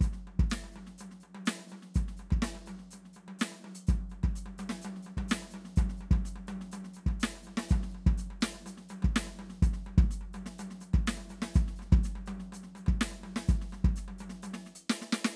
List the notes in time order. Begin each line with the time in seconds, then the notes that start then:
0.01 kick, hi-hat pedal, high tom
0.13 snare
0.27 high tom
0.40 kick, high tom
0.50 snare, hi-hat pedal
0.64 high tom
0.72 hi-hat pedal
0.76 high tom
0.87 snare
0.98 hi-hat pedal, high tom
1.11 snare
1.20 hi-hat pedal, high tom
1.35 high tom
1.46 snare, hi-hat pedal
1.59 high tom
1.68 hi-hat pedal, high tom
1.82 snare
1.95 kick, hi-hat pedal, high tom
2.08 snare
2.17 hi-hat pedal, high tom
2.31 kick, high tom
2.42 snare, hi-hat pedal
2.55 high tom
2.66 hi-hat pedal, high tom
2.79 snare
2.91 hi-hat pedal, high tom
3.05 snare
3.13 hi-hat pedal, high tom
3.28 high tom
3.39 snare, hi-hat pedal
3.52 high tom
3.61 hi-hat pedal, high tom
3.75 closed hi-hat
3.87 kick, hi-hat pedal, high tom
4.10 hi-hat pedal, high tom
4.24 kick, high tom
4.35 snare, hi-hat pedal
4.46 high tom
4.58 hi-hat pedal, high tom
4.70 snare
4.82 hi-hat pedal, high tom
4.96 snare
5.03 hi-hat pedal
5.07 high tom
5.17 kick, high tom
5.29 snare, hi-hat pedal
5.43 high tom
5.50 hi-hat pedal, high tom
5.65 snare
5.76 kick, hi-hat pedal, high tom
5.90 snare
5.97 hi-hat pedal
6.01 high tom
6.11 kick, high tom
6.25 snare, hi-hat pedal
6.36 high tom
6.47 hi-hat pedal, high tom
6.61 snare
6.72 hi-hat pedal, high tom
6.84 snare
6.94 hi-hat pedal, high tom
7.07 kick, high tom
7.20 snare, hi-hat pedal
7.36 high tom
7.43 hi-hat pedal
7.47 high tom
7.57 snare
7.69 kick, hi-hat pedal, high tom
7.83 snare
7.89 hi-hat pedal
7.95 high tom
8.07 kick, high tom
8.18 snare, hi-hat pedal
8.31 high tom
8.41 snare, hi-hat pedal
8.55 high tom
8.66 hi-hat pedal, high tom
8.78 snare
8.89 hi-hat pedal, high tom
9.03 kick, high tom
9.16 snare, hi-hat pedal
9.24 snare, high tom
9.32 kick
9.37 hi-hat pedal, high tom
9.50 snare
9.63 kick, hi-hat pedal, high tom
9.73 snare
9.84 hi-hat pedal, high tom
9.98 kick, high tom
10.11 snare, hi-hat pedal
10.21 high tom
10.34 hi-hat pedal, high tom
10.46 snare
10.59 hi-hat pedal, high tom
10.71 snare
10.81 hi-hat pedal, high tom
10.94 kick, high tom
11.07 snare, hi-hat pedal
11.18 high tom
11.29 hi-hat pedal, high tom
11.42 snare
11.54 kick, hi-hat pedal, high tom
11.68 snare
11.76 hi-hat pedal, high tom
11.82 snare
11.92 kick, high tom
12.04 snare, hi-hat pedal
12.16 high tom
12.26 hi-hat pedal, high tom
12.40 snare
12.53 hi-hat pedal, high tom
12.63 snare
12.75 hi-hat pedal, high tom
12.87 kick, high tom
13.01 snare, hi-hat pedal
13.11 high tom
13.22 kick, hi-hat pedal, high tom
13.36 snare
13.48 kick, hi-hat pedal, high tom
13.62 snare
13.69 hi-hat pedal, high tom
13.73 snare
13.85 kick, high tom
13.96 snare, hi-hat pedal
14.08 high tom
14.19 hi-hat pedal, high tom
14.30 snare
14.43 hi-hat pedal, high tom
14.54 snare
14.65 snare, hi-hat pedal
14.75 closed hi-hat
14.90 snare, hi-hat pedal
15.02 snare
15.13 snare, hi-hat pedal
15.25 snare